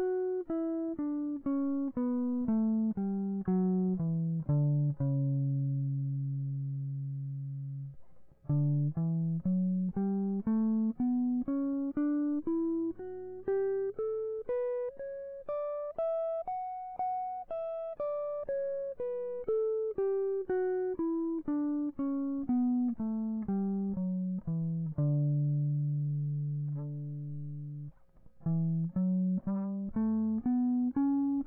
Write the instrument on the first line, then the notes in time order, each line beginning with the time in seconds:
electric guitar
0.00 F#4
0.50 E4
0.99 D4
1.47 C#4
1.98 B3
2.49 A3
2.99 G3
3.49 F#3
4.01 E3
4.51 D3
5.02 C#3
8.51 D3
8.99 E3
9.47 F#3
9.98 G3
10.48 A3
11.01 B3
11.49 C#4
11.98 D4
12.48 E4
13.00 F#4
13.49 G4
14.00 A4
14.49 B4
15.01 C#5
15.49 D5
15.99 E5
16.48 F#5
17.00 F#5
17.51 E5
18.00 D5
18.49 C#5
19.01 B4
19.49 A4
19.99 G4
20.50 F#4
21.00 E4
21.49 D4
22.00 C#4
22.50 B3
23.00 A3
23.50 G3
24.02 F#3
24.53 E3
25.00 D3
28.48 E3
28.97 F#3
29.49 G3
29.97 A3
30.47 B3
30.97 C#4